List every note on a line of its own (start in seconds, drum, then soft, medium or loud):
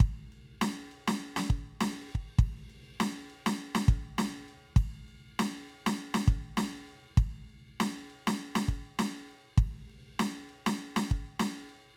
0.01 kick loud
0.01 ride bell medium
0.33 ride bell soft
0.62 snare loud
0.62 ride bell medium
0.92 ride bell soft
1.08 snare loud
1.37 snare loud
1.51 kick medium
1.51 ride bell soft
1.81 snare loud
1.81 ride loud
2.12 kick soft
2.12 ride bell soft
2.39 kick loud
2.39 ride medium
2.71 ride bell soft
3.01 snare loud
3.01 ride bell medium
3.31 ride bell soft
3.47 snare loud
3.76 snare loud
3.89 kick loud
3.89 ride bell medium
4.19 snare loud
4.19 ride bell medium
4.49 ride bell soft
4.77 kick loud
4.77 ride bell loud
5.09 ride bell soft
5.40 snare loud
5.40 ride bell loud
5.70 ride bell soft
5.87 snare loud
6.15 snare loud
6.28 kick loud
6.28 ride bell medium
6.58 snare loud
6.58 ride bell medium
6.90 ride soft
7.18 kick loud
7.18 ride bell medium
7.50 ride soft
7.81 snare loud
7.81 ride bell medium
8.11 ride bell soft
8.28 snare loud
8.56 snare loud
8.69 kick medium
8.69 ride bell medium
9.00 snare loud
9.00 ride bell medium
9.32 ride soft
9.58 kick loud
9.58 ride medium
9.90 ride soft
10.20 snare loud
10.20 ride bell medium
10.50 ride bell soft
10.67 snare loud
10.80 ride soft
10.97 snare loud
11.11 kick medium
11.11 ride bell medium
11.40 snare loud
11.40 ride bell medium
11.70 ride bell soft